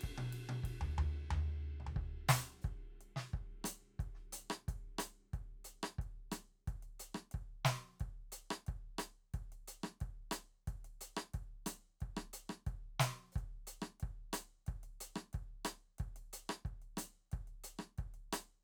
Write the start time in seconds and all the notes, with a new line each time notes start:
0.01 kick, ride
0.18 high tom
0.33 ride
0.49 high tom
0.64 kick, ride
0.81 floor tom
0.98 floor tom
1.31 floor tom
1.80 high tom
1.87 floor tom
1.96 kick
2.29 open hi-hat, snare
2.62 kick, hi-hat pedal
3.01 closed hi-hat
3.16 snare
3.33 kick, closed hi-hat
3.64 closed hi-hat, cross-stick
3.99 kick, closed hi-hat
4.14 snare
4.32 closed hi-hat
4.50 cross-stick
4.68 kick, closed hi-hat
4.98 closed hi-hat, cross-stick
5.33 kick, closed hi-hat
5.64 closed hi-hat
5.83 cross-stick
5.98 kick, closed hi-hat
6.32 closed hi-hat, cross-stick
6.67 kick, closed hi-hat
6.77 kick
6.82 closed hi-hat
7.00 closed hi-hat
7.14 cross-stick
7.31 kick, closed hi-hat
7.65 closed hi-hat, snare
8.00 kick, closed hi-hat
8.32 closed hi-hat
8.50 cross-stick
8.67 kick, closed hi-hat
8.98 closed hi-hat, cross-stick
9.34 kick, closed hi-hat
9.52 closed hi-hat
9.68 closed hi-hat
9.83 cross-stick
10.00 kick, closed hi-hat
10.31 closed hi-hat, cross-stick
10.67 kick, closed hi-hat
10.84 closed hi-hat
11.01 closed hi-hat
11.17 cross-stick
11.34 kick, closed hi-hat
11.66 closed hi-hat, cross-stick
12.01 kick, closed hi-hat
12.17 cross-stick
12.33 closed hi-hat
12.49 cross-stick
12.67 kick, closed hi-hat
13.00 open hi-hat, snare
13.32 kick, hi-hat pedal
13.38 closed hi-hat
13.67 closed hi-hat
13.82 cross-stick
14.00 kick, closed hi-hat
14.33 closed hi-hat, cross-stick
14.67 kick, closed hi-hat
14.83 closed hi-hat
15.00 closed hi-hat
15.16 cross-stick
15.33 kick, closed hi-hat
15.65 closed hi-hat, cross-stick
15.98 kick, closed hi-hat
16.16 closed hi-hat
16.33 closed hi-hat
16.49 cross-stick
16.65 kick, closed hi-hat
16.82 closed hi-hat
16.97 closed hi-hat, cross-stick
17.32 kick, closed hi-hat
17.47 closed hi-hat
17.64 closed hi-hat
17.79 cross-stick
17.98 kick, closed hi-hat
18.14 closed hi-hat
18.33 open hi-hat, cross-stick